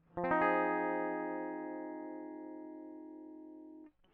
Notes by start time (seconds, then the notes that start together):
0.18 F3
0.24 C4
0.31 D#4
0.41 G#4